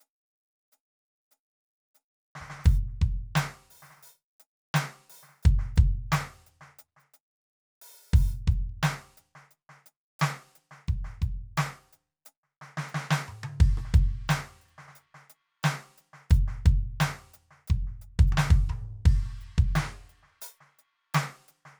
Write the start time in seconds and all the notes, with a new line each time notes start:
0.00 hi-hat pedal
0.72 hi-hat pedal
1.31 hi-hat pedal
1.94 hi-hat pedal
2.35 snare
2.40 kick, snare
2.50 snare
2.59 snare
2.64 open hi-hat, kick
2.88 snare
3.01 kick
3.35 closed hi-hat, snare
3.70 open hi-hat
3.82 snare
3.90 snare
3.97 snare
4.03 open hi-hat
4.07 hi-hat pedal
4.40 closed hi-hat
4.74 closed hi-hat, snare
4.87 snare
5.10 open hi-hat
5.16 open hi-hat
5.23 snare
5.28 snare
5.32 snare
5.43 open hi-hat, kick, hi-hat pedal
5.59 snare
5.76 closed hi-hat, kick
6.12 closed hi-hat, snare
6.34 snare, hi-hat pedal
6.46 closed hi-hat
6.61 snare
6.79 open hi-hat
6.96 snare, hi-hat pedal
7.14 closed hi-hat
7.81 open hi-hat
8.13 open hi-hat, kick
8.47 kick, closed hi-hat
8.69 kick
8.83 closed hi-hat, snare
9.17 closed hi-hat
9.35 snare
9.51 closed hi-hat
9.69 snare
9.86 closed hi-hat
10.19 closed hi-hat, snare
10.55 closed hi-hat
10.71 snare
10.87 kick, closed hi-hat
11.04 snare
11.22 closed hi-hat, kick
11.57 closed hi-hat, snare
11.82 hi-hat pedal
11.93 closed hi-hat
12.25 closed hi-hat, hi-hat pedal
12.43 snare
12.61 snare
12.77 snare
12.88 hi-hat pedal
12.94 snare
13.11 snare, hi-hat pedal
13.28 mid tom
13.43 high tom
13.60 kick, crash
13.77 cross-stick
13.85 snare
13.94 closed hi-hat, kick
14.28 closed hi-hat, snare, hi-hat pedal
14.61 closed hi-hat
14.68 closed hi-hat
14.78 snare
14.88 snare
14.95 open hi-hat, hi-hat pedal
15.14 snare
15.30 closed hi-hat
15.63 closed hi-hat, snare
15.98 closed hi-hat
16.13 snare
16.30 open hi-hat, kick
16.48 snare
16.65 closed hi-hat, kick
17.00 closed hi-hat, snare
17.34 closed hi-hat
17.51 snare
17.67 closed hi-hat, kick
17.87 snare
18.01 closed hi-hat
18.19 kick
18.27 hi-hat pedal
18.32 high tom
18.37 snare
18.50 kick
18.69 kick, mid tom
19.05 kick, crash
19.21 snare
19.25 snare
19.37 closed hi-hat, hi-hat pedal
19.58 kick
19.75 closed hi-hat, snare
20.09 closed hi-hat
20.23 snare
20.28 snare
20.41 open hi-hat, hi-hat pedal
20.60 snare
20.66 snare
20.79 closed hi-hat
21.14 closed hi-hat, snare
21.48 open hi-hat
21.65 snare